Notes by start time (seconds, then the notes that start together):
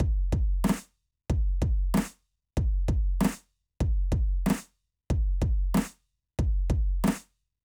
0.00 kick
0.32 kick
0.64 snare
0.69 snare
1.30 kick
1.62 kick
1.94 snare
1.97 snare
2.57 kick
2.88 kick
3.21 snare
3.24 snare
3.80 kick
4.12 kick
4.46 snare
4.50 snare
5.10 kick
5.42 kick
5.74 snare
5.77 snare
6.39 kick
6.70 kick
7.04 snare
7.08 snare